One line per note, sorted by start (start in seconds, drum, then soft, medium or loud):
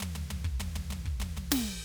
0.00 floor tom loud
0.00 hi-hat pedal soft
0.00 high tom medium
0.15 floor tom medium
0.15 high tom medium
0.30 floor tom medium
0.30 high tom medium
0.44 kick medium
0.60 floor tom medium
0.60 high tom medium
0.75 floor tom medium
0.75 high tom medium
0.90 floor tom medium
0.90 high tom medium
1.05 kick soft
1.20 floor tom medium
1.20 high tom medium
1.37 floor tom soft
1.37 high tom medium
1.51 snare loud
1.51 crash medium